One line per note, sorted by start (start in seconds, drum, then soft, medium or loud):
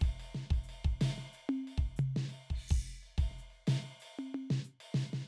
0.01 kick medium
0.01 hi-hat pedal medium
0.01 ride soft
0.20 ride soft
0.35 snare medium
0.51 kick medium
0.51 ride soft
0.64 hi-hat pedal medium
0.70 ride soft
0.85 kick medium
1.02 snare medium
1.02 ride medium
1.19 snare soft
1.33 hi-hat pedal medium
1.33 ride soft
1.50 high tom loud
1.68 ride soft
1.78 kick medium
1.97 floor tom loud
1.97 hi-hat pedal medium
2.17 snare medium
2.30 ride soft
2.51 kick soft
2.51 crash soft
2.69 kick medium
2.69 hi-hat pedal medium
2.69 crash medium
2.92 hi-hat pedal soft
3.03 ride soft
3.19 kick medium
3.19 ride soft
3.32 snare soft
3.39 hi-hat pedal medium
3.51 ride soft
3.68 snare medium
3.68 ride medium
3.85 snare soft
4.01 hi-hat pedal medium
4.01 ride soft
4.19 high tom medium
4.35 high tom medium
4.51 snare medium
4.65 hi-hat pedal medium
4.81 ride soft
4.95 snare medium
4.95 ride soft
5.14 snare medium